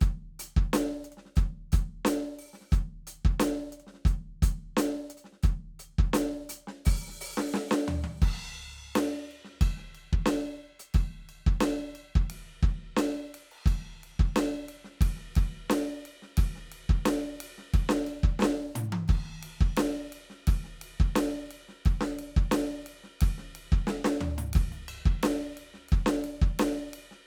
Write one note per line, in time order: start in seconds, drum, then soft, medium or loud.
0.01 open hi-hat medium
0.01 kick loud
0.39 closed hi-hat loud
0.57 kick loud
0.73 closed hi-hat loud
0.73 snare loud
1.05 closed hi-hat medium
1.12 closed hi-hat soft
1.17 snare soft
1.25 snare soft
1.36 closed hi-hat medium
1.36 kick loud
1.36 snare soft
1.72 closed hi-hat medium
1.72 kick loud
2.05 closed hi-hat loud
2.05 snare loud
2.39 open hi-hat medium
2.46 open hi-hat soft
2.53 snare soft
2.61 snare soft
2.71 closed hi-hat medium
2.71 kick loud
2.71 snare soft
2.71 hi-hat pedal soft
3.07 closed hi-hat loud
3.25 kick loud
3.40 closed hi-hat loud
3.40 snare loud
3.72 closed hi-hat medium
3.80 closed hi-hat soft
3.87 snare soft
3.94 snare soft
4.05 closed hi-hat medium
4.05 kick loud
4.42 closed hi-hat loud
4.42 kick loud
4.77 closed hi-hat loud
4.77 snare loud
5.10 closed hi-hat medium
5.17 closed hi-hat soft
5.24 snare soft
5.33 snare soft
5.43 closed hi-hat medium
5.43 kick loud
5.80 closed hi-hat medium
5.99 kick loud
6.14 closed hi-hat loud
6.14 snare loud
6.49 closed hi-hat loud
6.67 snare medium
6.85 open hi-hat loud
6.85 kick loud
7.08 snare soft
7.12 snare soft
7.21 open hi-hat loud
7.37 snare loud
7.54 snare loud
7.71 snare loud
7.88 floor tom loud
8.04 floor tom loud
8.22 kick loud
8.22 crash loud
8.72 hi-hat pedal soft
8.96 snare loud
8.96 hi-hat pedal soft
8.96 ride loud
9.31 ride bell soft
9.45 snare soft
9.61 kick loud
9.61 ride bell loud
9.78 snare soft
9.84 snare soft
9.95 ride bell medium
10.13 kick loud
10.13 snare soft
10.26 snare loud
10.26 ride bell loud
10.80 closed hi-hat medium
10.94 kick loud
10.94 ride bell medium
11.18 snare soft
11.29 ride bell medium
11.47 kick loud
11.61 snare loud
11.61 ride bell loud
11.95 ride bell medium
12.16 kick loud
12.30 ride loud
12.63 kick loud
12.97 snare loud
12.97 ride bell loud
13.35 ride medium
13.51 crash medium
13.66 kick loud
13.66 ride bell medium
14.04 ride medium
14.20 kick loud
14.36 snare loud
14.36 ride bell loud
14.69 ride medium
14.85 snare soft
15.01 kick loud
15.01 ride loud
15.16 snare soft
15.25 snare soft
15.36 kick loud
15.36 ride loud
15.70 snare loud
15.70 ride loud
16.06 ride medium
16.22 snare soft
16.37 kick loud
16.37 ride loud
16.56 snare soft
16.72 ride medium
16.89 kick loud
17.06 snare loud
17.06 ride loud
17.41 ride loud
17.58 snare soft
17.74 kick loud
17.74 ride medium
17.89 snare loud
18.07 ride bell medium
18.24 kick loud
18.35 kick soft
18.39 snare loud
18.42 snare loud
18.76 mid tom loud
18.92 high tom loud
19.08 kick loud
19.08 crash medium
19.26 high tom soft
19.43 ride loud
19.61 kick loud
19.77 snare loud
19.77 ride loud
20.12 ride medium
20.30 snare soft
20.47 kick loud
20.47 ride loud
20.64 snare soft
20.82 ride loud
21.00 kick loud
21.16 snare loud
21.16 ride loud
21.51 ride medium
21.69 snare soft
21.85 kick loud
21.85 ride medium
22.01 snare loud
22.19 ride medium
22.37 kick loud
22.52 snare loud
22.52 ride loud
22.86 ride medium
23.04 snare soft
23.21 kick loud
23.21 ride loud
23.38 snare soft
23.55 ride medium
23.72 kick loud
23.87 snare loud
24.05 snare loud
24.21 floor tom loud
24.38 mid tom loud
24.53 kick loud
24.53 ride loud
24.72 mid tom soft
24.88 ride bell loud
25.06 kick loud
25.23 snare loud
25.23 ride loud
25.57 ride medium
25.74 snare soft
25.89 kick loud
25.89 ride medium
26.06 snare loud
26.24 ride medium
26.42 kick loud
26.59 snare loud
26.59 ride loud
26.94 ride loud
27.11 snare soft